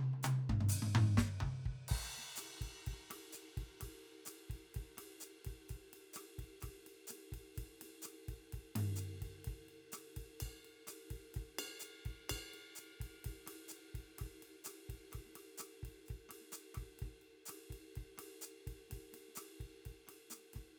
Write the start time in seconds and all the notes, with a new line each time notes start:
0.01 mid tom
0.14 mid tom
0.24 hi-hat pedal, mid tom
0.39 mid tom
0.50 kick, floor tom
0.61 floor tom
0.69 kick, hi-hat pedal
0.83 floor tom
0.94 kick, floor tom
1.18 kick, snare
1.24 kick
1.41 kick, mid tom
1.49 kick
1.66 kick
1.72 kick
1.89 kick, crash
1.98 kick
2.04 cross-stick
2.06 cross-stick
2.19 snare
2.36 cross-stick, snare, hi-hat pedal, ride
2.62 kick, ride
2.67 kick
2.87 kick, ride
2.93 kick
3.10 cross-stick, snare, ride
3.33 hi-hat pedal, ride
3.58 kick, ride
3.63 kick
3.81 kick, cross-stick, hi-hat pedal, ride
3.88 kick
4.26 cross-stick, hi-hat pedal, ride
4.50 kick, ride
4.55 kick
4.74 kick, hi-hat pedal, ride
4.82 kick
4.98 cross-stick, ride
5.21 hi-hat pedal, ride
5.45 kick, ride
5.52 kick
5.69 kick, hi-hat pedal, ride
5.76 kick
5.94 ride
6.14 cross-stick, hi-hat pedal, ride
6.39 kick, ride
6.44 kick
6.61 kick, cross-stick, snare, hi-hat pedal, ride
6.69 kick
6.87 ride
7.08 snare, hi-hat pedal, ride
7.33 kick, ride
7.38 kick
7.55 kick, hi-hat pedal, ride
7.63 kick
7.81 snare, ride
8.02 cross-stick, hi-hat pedal, ride
8.29 kick, ride
8.34 kick
8.53 kick, ride
8.59 kick
8.76 floor tom, ride
8.96 hi-hat pedal, ride
9.22 kick, ride
9.27 kick
9.45 kick, ride
9.53 kick
9.69 ride
9.93 cross-stick, snare, hi-hat pedal, ride
10.17 kick, ride
10.23 kick
10.41 kick, ride bell
10.48 kick
10.65 ride
10.88 cross-stick, hi-hat pedal, ride
11.11 kick, ride
11.16 kick
11.34 kick, hi-hat pedal, ride
11.42 kick
11.58 snare, ride bell
11.80 hi-hat pedal, ride
12.06 kick, ride
12.12 kick
12.29 kick, cross-stick, snare, ride bell
12.37 kick
12.54 ride
12.76 hi-hat pedal, ride
13.01 kick, ride
13.06 kick
13.25 kick, ride
13.32 kick
13.47 cross-stick, snare, ride
13.69 hi-hat pedal, ride
13.95 kick, ride
14.00 kick
14.19 kick, cross-stick, ride
14.27 kick
14.43 ride
14.65 cross-stick, snare, hi-hat pedal, ride
14.90 kick, ride
14.95 kick
15.12 kick, cross-stick, snare, hi-hat pedal, ride
15.20 kick
15.26 snare
15.36 cross-stick, ride
15.58 cross-stick, hi-hat pedal, ride
15.83 kick, ride
15.88 kick
16.06 hi-hat pedal, ride
16.11 kick
16.16 kick
16.30 cross-stick, ride
16.41 snare
16.53 cross-stick, hi-hat pedal, ride
16.75 kick, cross-stick, ride
16.83 kick
17.00 kick, ride
17.04 kick, snare
17.22 ride
17.46 cross-stick, hi-hat pedal
17.50 ride
17.71 kick, ride
17.96 kick, ride
18.02 kick
18.18 cross-stick, ride
18.42 hi-hat pedal, ride
18.67 kick, ride
18.73 kick
18.90 kick, snare, ride
18.98 kick
19.13 snare, ride
19.28 snare
19.36 cross-stick, hi-hat pedal, ride
19.61 kick, ride
19.66 kick
19.86 kick, ride
19.92 kick
20.07 cross-stick, ride
20.31 cross-stick, snare, hi-hat pedal, ride
20.54 kick, snare, ride